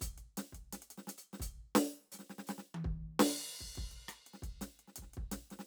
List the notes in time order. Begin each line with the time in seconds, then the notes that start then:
0.01 closed hi-hat, kick
0.18 closed hi-hat
0.37 snare, closed hi-hat
0.52 kick, closed hi-hat
0.73 snare, closed hi-hat
0.82 closed hi-hat
0.90 closed hi-hat
0.98 snare
1.07 snare, closed hi-hat
1.18 closed hi-hat
1.33 snare
1.40 open hi-hat, kick
1.75 open hi-hat, snare
2.12 snare, hi-hat pedal
2.19 snare
2.30 snare
2.38 snare
2.47 snare, hi-hat pedal
2.58 snare
2.74 high tom
2.84 kick
3.19 snare, crash
3.59 kick, closed hi-hat
3.64 snare
3.75 kick, closed hi-hat
3.91 closed hi-hat
4.08 cross-stick, closed hi-hat
4.26 closed hi-hat
4.34 snare
4.42 kick, closed hi-hat
4.61 snare, closed hi-hat
4.79 closed hi-hat
4.88 snare
4.96 kick, closed hi-hat
5.02 snare
5.14 kick, closed hi-hat
5.32 snare, closed hi-hat
5.51 snare, closed hi-hat
5.59 snare